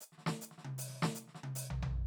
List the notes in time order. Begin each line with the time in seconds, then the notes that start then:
0.02 hi-hat pedal
0.12 snare
0.18 snare
0.26 snare
0.41 hi-hat pedal
0.51 snare
0.58 snare
0.65 high tom
0.78 hi-hat pedal
0.88 snare
0.94 snare
1.02 snare
1.15 hi-hat pedal
1.28 snare
1.34 snare
1.43 high tom
1.55 hi-hat pedal
1.70 floor tom
1.83 floor tom